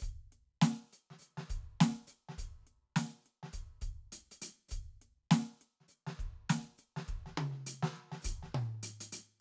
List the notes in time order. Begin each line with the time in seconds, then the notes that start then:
0.01 kick, hi-hat pedal
0.05 closed hi-hat
0.34 closed hi-hat
0.63 closed hi-hat, snare
0.94 closed hi-hat
1.12 snare
1.20 closed hi-hat, hi-hat pedal
1.39 snare
1.51 closed hi-hat, kick
1.57 kick
1.61 kick
1.82 closed hi-hat, snare
2.09 closed hi-hat, hi-hat pedal
2.30 snare
2.40 closed hi-hat, kick
2.62 snare
2.69 closed hi-hat
2.98 closed hi-hat, snare
3.22 hi-hat pedal
3.28 closed hi-hat
3.45 snare
3.55 closed hi-hat, kick
3.83 closed hi-hat, kick
3.89 kick
4.14 closed hi-hat
4.33 closed hi-hat
4.43 closed hi-hat
4.70 closed hi-hat, kick, hi-hat pedal
5.03 closed hi-hat
5.33 closed hi-hat, snare
5.63 closed hi-hat
5.82 snare
5.90 closed hi-hat, hi-hat pedal
6.08 snare
6.21 kick, closed hi-hat
6.26 kick
6.51 closed hi-hat, snare
6.80 closed hi-hat, hi-hat pedal
6.98 snare
7.10 kick, closed hi-hat
7.16 kick
7.28 snare
7.39 high tom
7.53 snare
7.59 snare
7.68 closed hi-hat
7.84 snare
7.97 closed hi-hat
8.13 snare
8.23 closed hi-hat, kick, hi-hat pedal
8.33 kick
8.36 kick
8.44 snare
8.56 mid tom
8.85 closed hi-hat
9.02 closed hi-hat
9.14 closed hi-hat